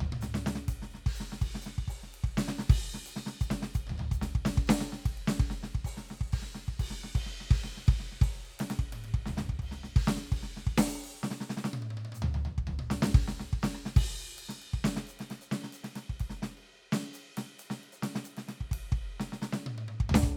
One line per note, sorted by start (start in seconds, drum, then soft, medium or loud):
0.01 floor tom loud
0.13 high tom loud
0.22 snare medium
0.22 hi-hat pedal medium
0.35 snare medium
0.47 snare medium
0.55 snare medium
0.69 kick medium
0.69 hi-hat pedal medium
0.69 ride medium
0.82 snare soft
0.91 snare soft
0.91 hi-hat pedal soft
1.07 kick medium
1.07 crash medium
1.15 hi-hat pedal medium
1.20 snare medium
1.32 snare medium
1.32 hi-hat pedal soft
1.42 kick medium
1.42 crash medium
1.55 snare medium
1.62 hi-hat pedal medium
1.66 snare soft
1.78 kick medium
1.88 open hi-hat medium
1.88 kick medium
2.03 snare soft
2.15 ride medium
2.24 kick medium
2.38 snare loud
2.38 crash medium
2.48 snare medium
2.59 snare medium
2.70 kick loud
2.70 crash loud
2.94 snare soft
3.06 hi-hat pedal medium
3.06 ride medium
3.16 snare medium
3.16 ride soft
3.27 snare medium
3.27 ride soft
3.41 kick medium
3.41 hi-hat pedal medium
3.51 snare medium
3.51 ride soft
3.62 snare medium
3.74 kick medium
3.74 hi-hat pedal medium
3.74 ride medium
3.87 floor tom medium
3.87 high tom medium
3.98 floor tom medium
3.98 high tom medium
4.12 kick medium
4.12 hi-hat pedal medium
4.22 snare medium
4.22 ride medium
4.35 kick medium
4.45 snare loud
4.45 crash medium
4.58 kick medium
4.68 snare loud
4.68 crash medium
4.81 snare medium
4.93 snare medium
5.06 kick medium
5.06 ride medium
5.18 ride soft
5.28 snare loud
5.40 kick medium
5.40 crash medium
5.50 snare medium
5.63 snare medium
5.75 kick medium
5.85 open hi-hat medium
5.85 kick medium
5.97 snare soft
6.11 snare soft
6.21 kick medium
6.33 kick medium
6.33 crash medium
6.42 snare soft
6.55 kick soft
6.55 snare soft
6.68 kick medium
6.80 kick medium
6.80 crash medium
6.91 snare soft
7.04 snare soft
7.15 kick medium
7.15 ride medium
7.26 snare soft
7.41 snare soft
7.51 kick loud
7.51 crash medium
7.64 snare soft
7.77 snare soft
7.88 kick loud
7.88 crash medium
8.00 snare soft
8.12 snare soft
8.22 open hi-hat medium
8.22 kick loud
8.37 snare soft
8.60 snare medium
8.60 ride medium
8.70 snare medium
8.70 ride medium
8.79 kick medium
8.93 high tom medium
8.93 ride medium
9.04 high tom medium
9.04 ride soft
9.14 kick medium
9.26 snare medium
9.26 floor tom medium
9.38 snare medium
9.38 floor tom medium
9.50 kick medium
9.60 kick medium
9.60 ride medium
9.72 snare soft
9.84 snare soft
9.96 kick loud
9.96 crash medium
10.08 snare loud
10.17 snare soft
10.22 snare soft
10.32 kick medium
10.32 crash medium
10.43 snare soft
10.57 snare soft
10.67 kick medium
10.78 open hi-hat loud
10.78 snare loud
11.04 ride medium
11.24 snare medium
11.31 snare medium
11.41 snare medium
11.50 snare medium
11.57 snare medium
11.65 snare medium
11.69 hi-hat pedal soft
11.74 high tom loud
11.83 high tom medium
11.91 high tom medium
11.98 high tom medium
12.05 high tom medium
12.13 hi-hat pedal medium
12.13 high tom medium
12.23 floor tom loud
12.35 floor tom medium
12.46 floor tom medium
12.58 kick medium
12.67 floor tom medium
12.79 high tom medium
12.91 snare medium
13.03 snare loud
13.15 kick loud
13.15 crash medium
13.28 snare medium
13.40 snare medium
13.53 kick medium
13.63 snare loud
13.63 crash medium
13.75 cross-stick medium
13.86 snare medium
13.97 kick loud
13.97 crash loud
14.37 hi-hat pedal soft
14.37 ride medium
14.49 snare medium
14.49 ride medium
14.62 ride soft
14.74 kick medium
14.80 hi-hat pedal soft
14.85 snare loud
14.85 ride soft
14.97 snare medium
15.08 hi-hat pedal medium
15.08 ride soft
15.20 snare medium
15.20 ride medium
15.31 snare medium
15.31 ride medium
15.42 hi-hat pedal medium
15.52 snare medium
15.52 ride medium
15.64 snare soft
15.73 hi-hat pedal medium
15.73 ride medium
15.84 snare medium
15.84 ride medium
15.96 snare medium
15.96 ride medium
16.10 kick soft
16.20 kick medium
16.20 ride medium
16.30 snare soft
16.43 snare medium
16.47 ride soft
16.58 ride soft
16.93 snare loud
16.93 ride medium
17.14 hi-hat pedal medium
17.14 ride medium
17.38 snare medium
17.38 ride medium
17.59 hi-hat pedal medium
17.59 ride medium
17.71 snare medium
17.71 ride soft
17.84 ride soft
17.93 hi-hat pedal medium
18.03 snare medium
18.03 ride medium
18.16 snare medium
18.25 hi-hat pedal medium
18.25 ride medium
18.37 snare medium
18.37 ride medium
18.49 snare medium
18.49 ride medium
18.61 kick soft
18.72 kick medium
18.72 ride loud
18.92 kick medium
18.92 ride soft
19.20 snare medium
19.33 snare medium
19.42 snare medium
19.53 snare medium
19.67 high tom loud
19.78 high tom medium
19.89 high tom medium
20.01 kick medium
20.10 floor tom loud
20.15 snare loud
20.24 kick medium